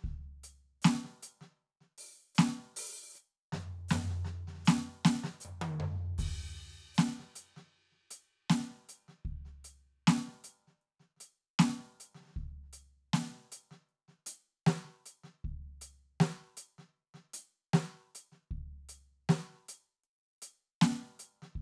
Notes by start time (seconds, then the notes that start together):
0.01 kick, snare
0.05 snare
0.09 snare
0.13 snare
0.21 snare
0.44 closed hi-hat
0.82 snare, hi-hat pedal
1.04 snare
1.09 snare
1.23 closed hi-hat
1.42 snare
1.81 snare
1.98 open hi-hat
2.35 snare, hi-hat pedal
2.63 snare
2.77 open hi-hat
3.15 hi-hat pedal
3.53 snare, floor tom
3.89 snare, floor tom, hi-hat pedal
4.09 snare
4.25 snare
4.48 snare
4.54 snare
4.58 snare
4.62 snare, hi-hat pedal
4.67 snare
5.05 snare
5.24 snare
5.41 hi-hat pedal
5.45 floor tom
5.62 high tom
5.80 floor tom
6.19 kick, hi-hat pedal, crash
6.57 open hi-hat
6.95 snare, hi-hat pedal
7.20 snare
7.36 closed hi-hat
7.57 snare
7.92 snare
8.11 closed hi-hat
8.50 snare
8.89 closed hi-hat
9.09 snare
9.25 kick, closed hi-hat
9.46 snare
9.65 closed hi-hat
10.08 snare
10.28 snare
10.45 closed hi-hat
10.68 snare
10.82 closed hi-hat
11.00 snare
11.17 closed hi-hat, snare
11.60 snare
11.78 snare
12.01 closed hi-hat
12.15 snare
12.21 snare
12.25 snare
12.29 snare
12.32 snare
12.37 kick, snare
12.41 snare
12.46 snare
12.64 snare
12.73 closed hi-hat
13.14 snare
13.35 snare
13.52 closed hi-hat
13.71 snare
13.89 closed hi-hat
14.09 snare
14.27 closed hi-hat
14.67 snare
14.85 snare
15.06 closed hi-hat
15.24 snare
15.45 kick
15.82 closed hi-hat
16.21 snare
16.58 closed hi-hat
16.79 snare
17.15 snare
17.34 closed hi-hat
17.74 snare
18.16 closed hi-hat
18.32 snare
18.51 kick
18.89 closed hi-hat
19.30 snare
19.54 snare
19.69 closed hi-hat
20.04 closed hi-hat
20.42 closed hi-hat
20.82 snare
21.02 snare
21.20 closed hi-hat
21.43 snare
21.56 kick